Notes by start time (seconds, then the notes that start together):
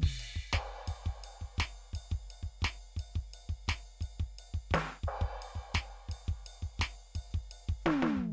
0.01 kick, hi-hat pedal, crash
0.20 ride
0.36 kick
0.52 kick, snare, hi-hat pedal, crash
0.88 kick, ride
1.06 kick, hi-hat pedal
1.24 ride
1.42 kick
1.57 kick, snare, hi-hat pedal, ride
1.94 kick, ride
2.10 kick, hi-hat pedal
2.31 ride
2.43 kick
2.60 kick, hi-hat pedal
2.65 snare, ride
2.97 kick, ride
3.14 kick, hi-hat pedal
3.34 ride
3.50 kick
3.67 kick, snare, hi-hat pedal, ride
4.01 kick, ride
4.19 kick, hi-hat pedal
4.39 ride
4.54 kick
4.70 kick, hi-hat pedal
4.74 snare, ride
5.04 kick, crash
5.22 kick, hi-hat pedal
5.42 ride
5.56 kick
5.73 kick, snare, hi-hat pedal, ride
6.09 kick, ride
6.26 kick, hi-hat pedal
6.47 ride
6.63 kick
6.77 kick, hi-hat pedal
6.82 snare, ride
7.16 kick, ride
7.30 hi-hat pedal
7.35 kick
7.52 ride
7.69 kick
7.82 floor tom, hi-hat pedal
7.87 snare
8.02 snare, floor tom
8.17 kick